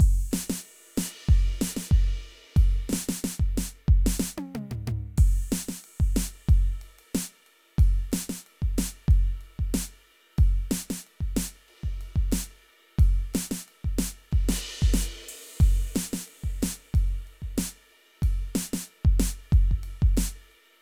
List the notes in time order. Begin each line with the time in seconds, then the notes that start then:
0.00 kick, ride, crash
0.31 snare, ride
0.50 snare
0.65 ride
0.97 snare, ride
1.29 kick, ride
1.61 snare, ride
1.76 snare
1.91 kick, ride
2.56 kick, ride
2.89 snare
2.93 snare
3.09 snare
3.24 snare
3.40 kick
3.57 snare
3.88 kick
4.06 snare
4.19 snare
4.38 high tom
4.55 mid tom
4.71 floor tom
4.87 floor tom
5.18 kick, ride, crash
5.52 snare
5.68 snare
5.84 ride
6.00 kick
6.16 snare, ride
6.49 kick, ride
6.81 ride
6.99 ride
7.15 snare, ride
7.46 ride
7.78 kick, ride
8.12 snare, ride
8.29 snare
8.46 ride
8.62 kick
8.78 snare, ride
9.08 kick, ride
9.41 ride
9.59 kick
9.74 snare, ride
10.07 ride
10.38 kick, ride
10.71 snare, ride
10.90 snare
11.07 ride
11.21 kick
11.36 snare, ride
11.68 ride
11.83 kick
12.01 ride
12.16 kick
12.32 snare, ride
12.99 kick, ride
13.34 snare, ride
13.51 snare
13.68 ride
13.85 kick
13.99 snare, ride
14.32 kick, ride
14.49 snare, ride
14.82 kick
14.94 snare, ride
15.29 crash
15.60 kick, ride
15.95 snare, ride
16.13 snare
16.28 ride
16.44 kick
16.62 snare, ride
16.94 kick, ride
17.27 ride
17.42 kick
17.58 snare, ride
17.91 ride
18.22 kick, ride
18.55 snare, ride
18.73 snare
18.88 ride
19.05 kick
19.20 snare, ride
19.52 kick, ride
19.71 kick
19.83 ride
20.02 kick
20.17 snare, ride
20.51 ride